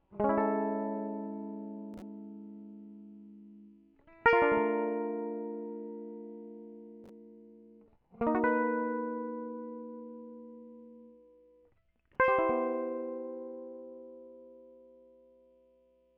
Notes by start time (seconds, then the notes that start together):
0.20 G#3
0.24 C#4
0.30 E4
0.38 A4
4.26 A#4
4.33 F4
4.42 D4
4.53 A3
8.22 A#3
8.27 D#4
8.35 F#4
8.44 B4
12.20 C5
12.28 G4
12.39 E4
12.50 B3